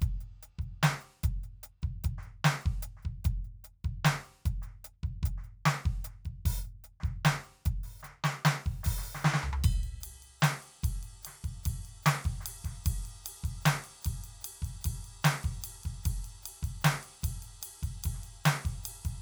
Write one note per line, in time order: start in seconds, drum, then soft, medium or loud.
0.01 closed hi-hat medium
0.01 kick medium
0.01 hi-hat pedal medium
0.21 closed hi-hat soft
0.43 closed hi-hat medium
0.59 kick soft
0.59 closed hi-hat soft
0.83 closed hi-hat loud
0.83 snare loud
1.01 closed hi-hat soft
1.24 closed hi-hat loud
1.24 kick medium
1.44 closed hi-hat soft
1.64 closed hi-hat loud
1.83 kick medium
1.83 closed hi-hat soft
2.04 closed hi-hat loud
2.04 kick medium
2.19 snare soft
2.23 closed hi-hat soft
2.45 closed hi-hat loud
2.45 snare loud
2.62 closed hi-hat soft
2.66 kick medium
2.83 closed hi-hat loud
2.97 snare soft
3.03 kick soft
3.03 closed hi-hat soft
3.25 closed hi-hat loud
3.25 kick medium
3.45 closed hi-hat soft
3.65 closed hi-hat medium
3.85 kick medium
3.85 closed hi-hat soft
4.05 closed hi-hat loud
4.05 snare loud
4.25 closed hi-hat soft
4.46 closed hi-hat loud
4.46 kick medium
4.62 snare soft
4.62 closed hi-hat medium
4.85 closed hi-hat loud
5.04 kick medium
5.04 closed hi-hat soft
5.23 closed hi-hat loud
5.23 kick medium
5.38 snare soft
5.44 closed hi-hat soft
5.66 closed hi-hat loud
5.66 snare loud
5.85 kick medium
5.85 closed hi-hat soft
6.05 closed hi-hat loud
6.05 snare soft
6.25 kick soft
6.25 closed hi-hat soft
6.46 open hi-hat loud
6.46 kick medium
6.58 hi-hat pedal soft
6.65 closed hi-hat soft
6.85 closed hi-hat medium
7.01 kick medium
7.01 snare soft
7.06 closed hi-hat soft
7.25 closed hi-hat loud
7.25 snare loud
7.45 closed hi-hat soft
7.66 closed hi-hat loud
7.66 kick medium
7.84 open hi-hat soft
7.84 snare soft
8.00 snare soft
8.00 hi-hat pedal medium
8.05 closed hi-hat medium
8.24 closed hi-hat medium
8.24 snare loud
8.46 open hi-hat loud
8.46 snare loud
8.66 kick medium
8.66 open hi-hat soft
8.84 open hi-hat loud
8.84 kick medium
8.84 snare soft
8.99 snare soft
9.04 open hi-hat medium
9.15 snare medium
9.25 snare loud
9.25 hi-hat pedal soft
9.34 snare loud
9.43 floor tom loud
9.49 kick soft
9.54 floor tom medium
9.64 kick loud
9.64 ride bell loud
9.72 hi-hat pedal medium
9.84 ride soft
10.01 hi-hat pedal medium
10.01 ride loud
10.23 ride soft
10.40 snare loud
10.40 hi-hat pedal medium
10.40 ride loud
10.63 ride soft
10.83 kick medium
10.83 hi-hat pedal medium
10.83 ride medium
11.03 ride soft
11.23 hi-hat pedal medium
11.23 ride medium
11.27 snare soft
11.45 kick soft
11.45 ride soft
11.64 kick medium
11.64 hi-hat pedal medium
11.64 ride loud
11.86 ride soft
12.03 snare loud
12.03 hi-hat pedal medium
12.03 ride loud
12.25 kick medium
12.25 ride soft
12.41 snare soft
12.41 hi-hat pedal medium
12.46 ride loud
12.65 kick soft
12.65 snare soft
12.65 ride medium
12.84 kick medium
12.84 hi-hat pedal medium
12.84 ride loud
13.06 ride soft
13.25 hi-hat pedal medium
13.25 ride loud
13.44 kick medium
13.44 ride medium
13.62 snare loud
13.62 hi-hat pedal medium
13.67 ride loud
13.85 ride soft
14.02 hi-hat pedal medium
14.02 ride loud
14.06 kick medium
14.24 ride medium
14.41 hi-hat pedal medium
14.41 ride loud
14.63 kick soft
14.63 ride medium
14.82 hi-hat pedal medium
14.82 ride loud
14.86 kick medium
15.05 ride soft
15.23 snare loud
15.23 hi-hat pedal medium
15.23 ride loud
15.44 kick medium
15.44 ride soft
15.55 kick soft
15.62 hi-hat pedal medium
15.62 ride loud
15.84 kick soft
15.84 ride soft
16.04 kick medium
16.04 hi-hat pedal medium
16.04 ride loud
16.25 ride soft
16.43 hi-hat pedal medium
16.43 ride loud
16.63 kick medium
16.63 ride medium
16.81 snare loud
16.81 hi-hat pedal medium
16.81 ride loud
17.04 ride soft
17.22 kick medium
17.22 hi-hat pedal medium
17.22 ride loud
17.43 ride medium
17.62 hi-hat pedal medium
17.62 ride loud
17.83 kick medium
17.83 ride medium
18.03 kick medium
18.03 hi-hat pedal medium
18.03 ride loud
18.15 snare soft
18.24 ride soft
18.45 snare loud
18.45 hi-hat pedal medium
18.45 ride loud
18.66 kick medium
18.66 ride soft
18.84 hi-hat pedal medium
18.84 ride loud
19.05 kick medium
19.05 ride medium